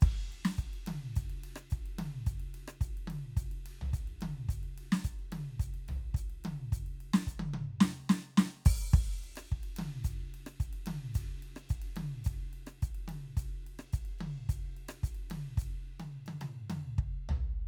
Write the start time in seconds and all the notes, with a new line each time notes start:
0.01 kick, hi-hat pedal, ride
0.28 kick
0.32 ride
0.45 snare, ride
0.57 kick, hi-hat pedal
0.73 ride
0.87 high tom, ride
1.16 kick, hi-hat pedal, ride
1.30 ride
1.44 ride
1.56 cross-stick
1.70 kick, hi-hat pedal, ride
1.86 ride
1.99 high tom, ride
2.26 kick, hi-hat pedal, ride
2.40 ride
2.54 ride
2.68 cross-stick
2.81 kick, hi-hat pedal, ride
2.97 ride
3.08 high tom, ride
3.37 kick, hi-hat pedal, ride
3.52 ride
3.66 ride
3.81 floor tom
3.93 kick, hi-hat pedal, ride
4.08 ride
4.21 high tom, ride
4.49 kick, hi-hat pedal, ride
4.63 ride
4.78 ride
4.92 snare
5.04 kick, hi-hat pedal, ride
5.19 ride
5.32 high tom, ride
5.60 kick, hi-hat pedal, ride
5.74 ride
5.88 floor tom, ride
6.14 kick, hi-hat pedal, ride
6.30 ride
6.44 high tom, ride
6.72 kick, hi-hat pedal, ride
6.86 ride
7.01 ride
7.14 snare
7.27 kick, hi-hat pedal
7.40 high tom
7.54 high tom
7.81 snare
8.09 snare
8.38 snare
8.65 open hi-hat, kick
8.94 kick, ride
9.24 ride
9.36 cross-stick, ride
9.50 kick, hi-hat pedal
9.63 ride
9.77 high tom, ride
10.04 kick, hi-hat pedal, ride
10.34 ride
10.47 cross-stick, ride
10.60 kick, hi-hat pedal
10.73 ride
10.86 high tom, ride
11.14 kick, hi-hat pedal, ride
11.43 ride
11.56 cross-stick, ride
11.69 kick, hi-hat pedal
11.82 ride
11.96 high tom, ride
12.24 kick, hi-hat pedal, ride
12.53 ride
12.67 cross-stick, ride
12.82 kick, hi-hat pedal
12.95 ride
13.08 high tom, ride
13.37 kick, hi-hat pedal, ride
13.67 ride
13.79 cross-stick, ride
13.93 kick, hi-hat pedal
14.05 ride
14.19 high tom, ride
14.49 kick, hi-hat pedal, ride
14.77 ride
14.89 cross-stick, ride
15.03 kick, hi-hat pedal
15.15 ride
15.30 high tom, ride
15.58 kick, hi-hat pedal
15.62 ride
16.00 high tom, ride bell
16.26 high tom, ride bell
16.41 high tom, ride bell
16.70 high tom, ride bell
16.98 kick
17.29 floor tom